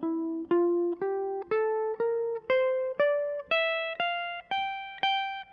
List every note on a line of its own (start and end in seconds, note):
0.03 0.48 E4
0.52 0.97 F4
1.02 1.45 G4
1.52 1.97 A4
2.01 2.41 A#4
2.50 2.96 C5
3.00 3.44 D5
3.52 3.98 E5
4.01 4.44 F5
4.52 5.01 G5
5.04 5.46 G5